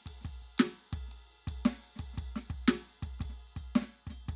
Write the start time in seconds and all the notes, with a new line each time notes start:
0.01 snare
0.06 kick, ride
0.21 kick, snare, ride bell
0.42 kick
0.58 snare, ride
0.93 kick, ride
1.08 snare, ride
1.14 snare
1.47 kick, ride
1.65 snare, ride
1.96 kick, snare, ride
2.13 snare
2.18 kick, ride
2.36 snare
2.50 kick
2.68 snare, ride
3.02 kick, snare, ride
3.19 kick, snare, ride
3.29 snare
3.56 kick, ride bell
3.75 snare, ride bell
3.82 snare
4.07 kick, snare, ride bell
4.25 kick, snare, ride